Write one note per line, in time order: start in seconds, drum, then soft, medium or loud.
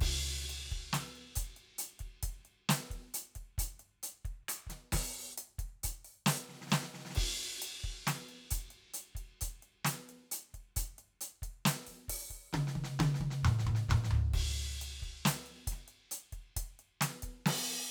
0.01 kick medium
0.01 ride loud
0.49 closed hi-hat medium
0.71 kick soft
0.71 closed hi-hat soft
0.93 snare loud
0.93 closed hi-hat medium
1.15 closed hi-hat soft
1.36 closed hi-hat loud
1.36 kick soft
1.57 closed hi-hat soft
1.78 closed hi-hat loud
1.99 kick soft
1.99 closed hi-hat soft
2.23 kick soft
2.23 closed hi-hat medium
2.45 closed hi-hat soft
2.69 closed hi-hat loud
2.69 snare loud
2.90 kick soft
2.90 closed hi-hat soft
3.14 closed hi-hat loud
3.35 kick soft
3.35 closed hi-hat soft
3.58 closed hi-hat loud
3.58 kick soft
3.79 closed hi-hat soft
4.03 closed hi-hat loud
4.25 kick soft
4.25 closed hi-hat soft
4.43 kick soft
4.49 closed hi-hat loud
4.49 cross-stick medium
4.67 kick soft
4.67 snare soft
4.67 closed hi-hat medium
4.92 open hi-hat loud
4.92 kick soft
4.92 snare medium
5.33 hi-hat pedal soft
5.38 closed hi-hat loud
5.59 kick soft
5.59 closed hi-hat medium
5.83 closed hi-hat loud
5.83 kick soft
6.05 open hi-hat medium
6.26 open hi-hat loud
6.26 snare loud
6.49 snare soft
6.53 snare soft
6.56 snare soft
6.61 snare medium
6.67 snare soft
6.67 hi-hat pedal medium
6.72 snare loud
6.83 snare medium
6.94 snare soft
6.99 snare soft
7.05 snare medium
7.10 snare medium
7.15 kick medium
7.15 snare soft
7.15 ride loud
7.62 closed hi-hat loud
7.84 kick soft
7.84 closed hi-hat soft
8.07 snare loud
8.07 closed hi-hat medium
8.29 closed hi-hat soft
8.43 snare soft
8.51 closed hi-hat loud
8.51 kick soft
8.71 closed hi-hat soft
8.86 snare soft
8.94 closed hi-hat loud
9.15 kick soft
9.15 closed hi-hat medium
9.41 closed hi-hat loud
9.41 kick soft
9.62 closed hi-hat soft
9.85 closed hi-hat loud
9.85 snare loud
10.09 closed hi-hat soft
10.32 closed hi-hat loud
10.50 snare soft
10.54 kick soft
10.54 closed hi-hat soft
10.76 closed hi-hat loud
10.76 kick soft
10.98 closed hi-hat soft
11.21 closed hi-hat loud
11.42 kick soft
11.42 closed hi-hat medium
11.65 closed hi-hat loud
11.65 snare loud
11.87 kick soft
11.87 open hi-hat medium
12.08 kick soft
12.08 open hi-hat loud
12.30 kick soft
12.30 open hi-hat medium
12.53 kick soft
12.53 snare medium
12.53 high tom loud
12.67 snare medium
12.75 kick soft
12.75 high tom medium
12.84 snare medium
12.99 kick soft
12.99 snare medium
12.99 hi-hat pedal soft
12.99 high tom loud
13.14 snare medium
13.20 kick soft
13.20 high tom medium
13.31 snare medium
13.43 kick soft
13.43 snare medium
13.43 hi-hat pedal soft
13.43 mid tom loud
13.59 snare medium
13.65 kick soft
13.65 mid tom loud
13.75 snare medium
13.89 kick soft
13.89 snare medium
13.89 mid tom loud
14.04 snare medium
14.10 kick soft
14.10 floor tom loud
14.34 kick medium
14.34 ride loud
14.42 kick soft
14.82 closed hi-hat medium
15.02 kick soft
15.02 closed hi-hat soft
15.25 closed hi-hat loud
15.25 snare loud
15.46 closed hi-hat soft
15.67 kick soft
15.67 closed hi-hat medium
15.71 snare soft
15.88 closed hi-hat soft
16.11 closed hi-hat loud
16.32 kick soft
16.32 closed hi-hat soft
16.57 kick soft
16.57 closed hi-hat loud
16.79 closed hi-hat soft
17.01 snare loud
17.01 closed hi-hat loud
17.22 kick soft
17.22 closed hi-hat medium
17.46 snare loud
17.46 crash loud